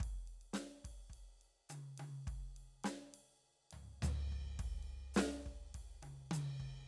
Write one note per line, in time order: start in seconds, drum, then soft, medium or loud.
0.00 kick soft
0.00 ride soft
0.27 ride soft
0.41 ride soft
0.53 snare medium
0.53 hi-hat pedal soft
0.53 ride soft
0.84 kick soft
0.84 ride soft
1.09 kick soft
1.09 ride soft
1.41 ride soft
1.69 hi-hat pedal soft
1.69 high tom soft
1.69 ride soft
1.98 high tom soft
1.98 ride soft
2.27 kick soft
2.27 ride soft
2.56 ride soft
2.84 snare medium
2.84 hi-hat pedal soft
2.84 ride soft
3.14 ride soft
3.71 floor tom soft
3.71 ride soft
4.02 floor tom medium
4.02 hi-hat pedal medium
4.02 ride soft
4.32 kick soft
4.59 kick soft
4.59 ride soft
4.83 ride soft
5.14 snare loud
5.14 hi-hat pedal soft
5.14 ride soft
5.43 kick soft
5.43 ride soft
5.74 kick soft
5.74 ride soft
6.02 high tom soft
6.02 ride soft
6.31 hi-hat pedal medium
6.31 high tom medium
6.31 ride soft
6.59 kick soft